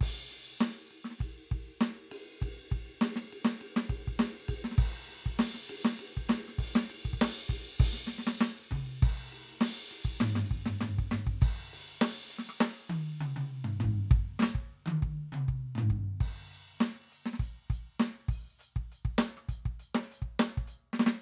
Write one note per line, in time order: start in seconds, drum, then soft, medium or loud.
0.01 kick medium
0.01 ride loud
0.31 ride medium
0.59 snare loud
0.59 hi-hat pedal soft
0.59 ride medium
0.89 hi-hat pedal soft
0.89 ride medium
1.05 snare medium
1.11 snare soft
1.19 kick medium
1.19 snare soft
1.19 ride medium
1.52 kick medium
1.52 ride medium
1.81 snare loud
1.81 ride medium
2.11 open hi-hat medium
2.11 ride loud
2.41 kick medium
2.41 hi-hat pedal medium
2.41 ride loud
2.72 kick medium
2.72 ride medium
3.01 snare loud
3.01 ride loud
3.16 snare medium
3.33 ride medium
3.45 snare loud
3.58 hi-hat pedal soft
3.58 ride loud
3.77 snare loud
3.90 kick medium
3.90 ride loud
4.08 kick medium
4.19 snare loud
4.19 ride loud
4.49 kick medium
4.49 ride loud
4.64 snare medium
4.72 snare medium
4.78 kick loud
4.78 crash medium
5.09 ride medium
5.26 kick medium
5.39 snare loud
5.39 ride loud
5.54 snare soft
5.70 hi-hat pedal soft
5.70 ride loud
5.85 snare loud
5.97 hi-hat pedal soft
5.97 ride medium
6.17 kick medium
6.29 snare loud
6.29 ride loud
6.48 snare soft
6.59 kick medium
6.59 ride medium
6.75 snare loud
6.90 ride medium
7.05 kick medium
7.13 kick medium
7.21 snare loud
7.21 ride loud
7.50 kick medium
7.50 ride medium
7.80 kick loud
7.80 ride loud
7.93 snare soft
8.07 snare medium
8.19 snare medium
8.27 snare loud
8.41 snare loud
8.71 kick medium
8.71 mid tom loud
9.03 kick loud
9.03 crash medium
9.33 ride medium
9.61 snare loud
9.61 ride loud
9.91 ride medium
10.05 kick medium
10.20 snare loud
10.20 floor tom loud
10.36 snare medium
10.36 floor tom medium
10.51 kick medium
10.66 snare medium
10.66 floor tom medium
10.81 snare medium
10.81 floor tom loud
10.99 kick medium
11.12 snare loud
11.12 floor tom loud
11.27 kick medium
11.42 kick loud
11.42 crash medium
11.72 ride medium
12.02 snare loud
12.02 ride medium
12.29 ride medium
12.39 snare medium
12.49 cross-stick medium
12.61 snare loud
12.90 high tom loud
13.21 mid tom loud
13.36 mid tom loud
13.65 floor tom loud
13.80 floor tom loud
13.85 kick soft
14.11 kick loud
14.39 snare loud
14.43 snare loud
14.55 kick medium
14.86 high tom loud
14.88 high tom loud
15.03 kick medium
15.33 mid tom loud
15.34 mid tom loud
15.49 kick medium
15.76 floor tom medium
15.78 floor tom loud
15.90 kick medium
16.21 kick medium
16.21 crash medium
16.51 closed hi-hat medium
16.81 closed hi-hat medium
16.81 snare loud
17.12 closed hi-hat medium
17.26 snare medium
17.34 snare medium
17.40 closed hi-hat medium
17.40 kick medium
17.70 closed hi-hat medium
17.70 kick medium
18.00 closed hi-hat medium
18.00 snare loud
18.29 open hi-hat medium
18.29 kick medium
18.59 closed hi-hat medium
18.59 hi-hat pedal medium
18.76 kick medium
18.92 closed hi-hat medium
19.05 kick medium
19.18 closed hi-hat loud
19.18 snare loud
19.37 cross-stick medium
19.49 closed hi-hat medium
19.49 kick medium
19.66 kick medium
19.80 closed hi-hat medium
19.95 snare loud
20.12 closed hi-hat medium
20.22 kick medium
20.40 closed hi-hat loud
20.40 snare loud
20.58 kick medium
20.68 closed hi-hat medium
20.93 snare medium
21.00 snare loud
21.07 snare loud